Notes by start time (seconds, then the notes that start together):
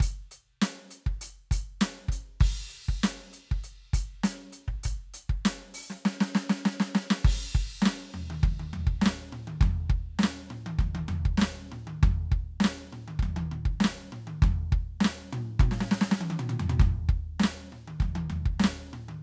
0.01 closed hi-hat, kick
0.32 closed hi-hat
0.62 closed hi-hat, snare
0.91 closed hi-hat
1.07 kick
1.22 closed hi-hat
1.51 closed hi-hat, kick
1.81 closed hi-hat, snare
2.09 closed hi-hat, kick
2.37 snare
2.41 kick, crash
2.56 hi-hat pedal
2.70 closed hi-hat
2.89 kick, snare
3.04 closed hi-hat, snare
3.33 closed hi-hat
3.52 kick
3.64 closed hi-hat
3.94 closed hi-hat, kick
4.24 closed hi-hat, snare
4.53 closed hi-hat
4.68 kick
4.84 closed hi-hat, kick
5.14 closed hi-hat
5.30 kick
5.45 closed hi-hat, snare
5.74 open hi-hat
5.90 snare
6.05 snare
6.21 snare
6.35 snare
6.50 snare
6.66 snare
6.80 snare
6.95 snare
7.11 snare
7.25 kick, crash
7.55 kick
7.82 snare
7.86 snare, hi-hat pedal
8.14 floor tom
8.30 high tom
8.43 kick, floor tom
8.60 high tom
8.73 floor tom
8.87 kick
9.02 snare
9.06 snare
9.33 mid tom
9.48 high tom
9.61 kick, floor tom
9.90 kick
10.19 snare
10.24 snare
10.51 mid tom
10.67 high tom
10.79 kick, floor tom
10.95 high tom
11.09 floor tom
11.26 kick
11.38 snare
11.42 snare
11.72 mid tom
11.87 high tom
12.03 kick, floor tom
12.32 kick
12.61 snare
12.64 snare
12.93 mid tom
13.08 high tom
13.19 kick, floor tom
13.37 high tom
13.52 mid tom
13.66 kick
13.81 snare
13.85 snare
14.13 mid tom
14.27 high tom
14.42 kick, floor tom
14.72 kick
15.01 snare
15.05 snare
15.33 mid tom
15.60 kick, mid tom
15.71 snare
15.81 snare
15.92 snare
16.01 snare
16.06 hi-hat pedal
16.12 snare
16.21 high tom
16.30 high tom
16.39 mid tom
16.50 mid tom
16.60 floor tom
16.70 mid tom
16.80 kick, floor tom
17.09 kick
17.40 snare
17.44 snare
17.73 mid tom
17.88 high tom
18.00 kick, floor tom
18.16 high tom
18.30 floor tom
18.46 kick
18.60 snare
18.64 snare
18.93 mid tom
19.09 high tom